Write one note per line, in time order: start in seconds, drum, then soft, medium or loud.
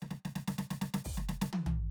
0.01 snare soft
0.01 hi-hat pedal soft
0.11 snare soft
0.25 snare medium
0.36 snare medium
0.48 snare medium
0.48 hi-hat pedal soft
0.59 snare medium
0.71 snare medium
0.71 hi-hat pedal soft
0.82 snare medium
0.94 snare medium
1.05 open hi-hat loud
1.05 kick medium
1.14 hi-hat pedal medium
1.18 snare medium
1.29 snare medium
1.42 snare medium
1.53 high tom loud
1.67 floor tom loud